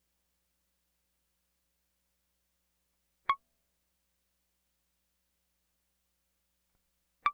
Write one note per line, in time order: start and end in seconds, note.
3.30 3.36 C#6
7.26 7.34 D6